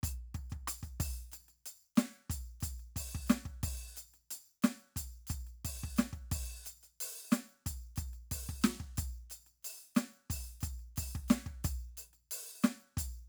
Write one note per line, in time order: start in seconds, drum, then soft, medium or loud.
0.03 kick medium
0.03 percussion loud
0.35 kick medium
0.35 percussion soft
0.50 kick medium
0.50 percussion soft
0.68 cross-stick medium
0.68 percussion loud
0.83 kick soft
0.83 percussion soft
1.00 kick medium
1.00 percussion loud
1.32 percussion medium
1.33 percussion medium
1.48 percussion soft
1.66 percussion medium
1.96 snare loud
1.96 percussion soft
1.98 percussion medium
2.13 percussion soft
2.30 kick medium
2.30 percussion medium
2.61 kick medium
2.61 percussion medium
2.63 percussion loud
2.80 percussion soft
2.96 kick medium
2.96 percussion loud
3.15 kick medium
3.27 snare loud
3.27 percussion medium
3.30 percussion medium
3.45 kick soft
3.45 percussion soft
3.63 kick medium
3.63 percussion loud
3.96 percussion soft
3.96 percussion medium
4.14 percussion soft
4.31 percussion loud
4.63 snare loud
4.63 percussion medium
4.80 percussion soft
4.96 kick medium
4.96 percussion loud
5.27 percussion medium
5.30 kick medium
5.30 percussion medium
5.47 percussion soft
5.65 kick medium
5.65 percussion loud
5.84 kick medium
5.97 percussion medium
5.98 snare loud
5.98 percussion medium
6.13 kick soft
6.13 percussion soft
6.32 kick medium
6.32 percussion loud
6.66 percussion medium
6.83 percussion soft
7.01 percussion loud
7.32 snare loud
7.32 percussion medium
7.49 percussion soft
7.66 kick medium
7.66 percussion loud
7.96 percussion medium
7.98 kick medium
7.98 percussion medium
8.13 percussion soft
8.31 kick medium
8.31 percussion loud
8.49 kick medium
8.62 percussion medium
8.64 snare loud
8.64 percussion medium
8.80 kick soft
8.80 percussion soft
8.96 percussion soft
8.98 kick medium
8.98 percussion loud
9.30 percussion medium
9.47 percussion soft
9.63 percussion soft
9.65 percussion loud
9.95 snare loud
9.95 percussion medium
9.97 percussion medium
10.14 percussion soft
10.30 kick medium
10.30 percussion loud
10.61 kick medium
10.61 percussion medium
10.63 percussion medium
10.79 percussion soft
10.96 kick medium
10.96 percussion soft
10.96 percussion loud
11.15 kick medium
11.28 snare loud
11.28 percussion medium
11.30 percussion medium
11.46 kick soft
11.46 percussion soft
11.64 kick medium
11.64 percussion soft
11.64 percussion loud
11.97 percussion medium
12.13 percussion soft
12.31 percussion loud
12.63 snare loud
12.63 percussion medium
12.80 percussion soft
12.97 kick medium
12.97 percussion loud